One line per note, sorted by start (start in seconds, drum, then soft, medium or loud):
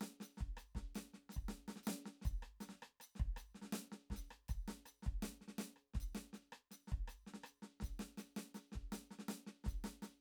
0.01 snare medium
0.20 snare soft
0.20 hi-hat pedal soft
0.37 kick soft
0.37 snare soft
0.57 cross-stick medium
0.57 hi-hat pedal soft
0.75 kick soft
0.75 snare soft
0.95 snare medium
0.95 hi-hat pedal soft
1.14 snare soft
1.29 snare soft
1.29 hi-hat pedal soft
1.36 kick soft
1.49 snare medium
1.68 snare medium
1.76 snare soft
1.83 snare medium
1.83 hi-hat pedal soft
2.06 snare soft
2.22 kick soft
2.22 snare soft
2.22 hi-hat pedal soft
2.43 cross-stick medium
2.60 snare soft
2.60 hi-hat pedal soft
2.69 snare soft
2.82 cross-stick medium
3.00 cross-stick soft
3.00 hi-hat pedal soft
3.15 snare soft
3.20 kick soft
3.36 cross-stick medium
3.36 hi-hat pedal soft
3.55 snare soft
3.62 snare soft
3.73 snare medium
3.73 hi-hat pedal soft
3.92 snare soft
4.10 kick soft
4.10 snare soft
4.12 snare soft
4.12 hi-hat pedal soft
4.31 cross-stick medium
4.48 kick soft
4.48 cross-stick soft
4.48 hi-hat pedal soft
4.68 snare medium
4.86 cross-stick soft
4.86 hi-hat pedal soft
5.03 kick soft
5.03 snare soft
5.22 snare medium
5.22 hi-hat pedal soft
5.41 snare soft
5.48 snare soft
5.58 snare medium
5.58 hi-hat pedal soft
5.76 cross-stick soft
5.94 kick soft
5.94 snare soft
6.00 hi-hat pedal soft
6.15 snare medium
6.33 snare soft
6.33 hi-hat pedal soft
6.52 cross-stick medium
6.71 snare soft
6.71 hi-hat pedal soft
6.87 snare soft
6.92 kick soft
7.08 cross-stick medium
7.08 hi-hat pedal soft
7.27 snare soft
7.34 snare soft
7.44 cross-stick medium
7.44 hi-hat pedal soft
7.62 snare soft
7.80 kick soft
7.80 snare soft
7.80 hi-hat pedal soft
7.87 kick soft
7.99 snare medium
8.18 snare medium
8.18 hi-hat pedal soft
8.36 snare medium
8.54 snare soft
8.54 hi-hat pedal soft
8.72 kick soft
8.72 snare soft
8.92 snare medium
8.92 hi-hat pedal soft
9.11 snare soft
9.19 snare soft
9.28 snare medium
9.28 hi-hat pedal soft
9.47 snare soft
9.64 kick soft
9.64 snare soft
9.68 hi-hat pedal soft
9.84 snare medium
10.02 snare medium
10.02 hi-hat pedal soft